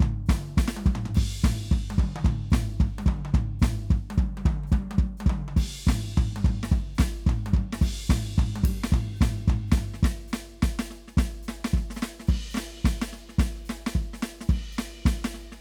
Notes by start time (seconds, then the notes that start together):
0.01 kick, floor tom
0.27 kick, snare, hi-hat pedal
0.31 mid tom
0.58 kick, snare
0.66 snare, hi-hat pedal
0.77 high tom
0.87 kick
0.96 floor tom
1.06 floor tom
1.15 kick, ride
1.41 kick, snare, hi-hat pedal
1.46 floor tom
1.72 kick, floor tom
1.91 hi-hat pedal, high tom
1.99 kick, mid tom
2.16 mid tom
2.25 kick, floor tom
2.51 kick, snare, hi-hat pedal
2.55 floor tom
2.81 kick, floor tom
2.99 hi-hat pedal, high tom
3.07 kick, mid tom
3.26 mid tom
3.35 kick, floor tom
3.60 kick, snare, hi-hat pedal
3.65 floor tom
3.91 kick, floor tom
4.11 hi-hat pedal, high tom
4.18 kick, mid tom
4.38 high tom
4.46 kick, mid tom
4.64 hi-hat pedal, high tom
4.72 kick, high tom
4.92 high tom
4.99 kick
5.18 hi-hat pedal, high tom
5.27 kick, mid tom
5.49 mid tom
5.57 kick, ride
5.85 kick, snare, hi-hat pedal
5.91 floor tom
6.18 kick, floor tom
6.37 hi-hat pedal, high tom
6.45 kick, floor tom
6.64 snare
6.72 kick, mid tom
6.95 snare, hi-hat pedal
7.00 kick, snare
7.27 kick, floor tom
7.47 hi-hat pedal, high tom
7.54 kick, floor tom
7.73 snare
7.82 kick, ride
8.06 hi-hat pedal
8.10 kick, snare, floor tom
8.39 kick, floor tom
8.56 hi-hat pedal, high tom
8.64 kick, ride
8.84 snare
8.93 kick, floor tom
9.17 hi-hat pedal
9.22 kick, snare, floor tom
9.48 kick, floor tom
9.68 hi-hat pedal
9.72 kick, snare
9.78 floor tom
9.94 snare
10.03 kick, snare
10.28 hi-hat pedal
10.34 snare
10.63 kick, snare
10.80 snare
10.85 hi-hat pedal
10.91 snare
11.08 snare
11.18 kick, snare
11.38 snare
11.43 hi-hat pedal
11.49 snare
11.65 snare
11.74 kick, snare
11.91 snare, hi-hat pedal
11.97 snare
12.03 snare
12.20 snare
12.28 kick, crash
12.51 snare, hi-hat pedal
12.58 snare
12.85 kick, snare
13.02 snare, hi-hat pedal
13.13 snare
13.30 snare
13.39 kick, snare
13.57 snare
13.66 hi-hat pedal
13.70 snare
13.87 snare
13.96 kick
14.14 snare, hi-hat pedal
14.23 snare
14.41 snare
14.50 kick, crash
14.73 hi-hat pedal
14.79 snare
15.06 kick, snare
15.25 snare, hi-hat pedal
15.35 snare
15.53 snare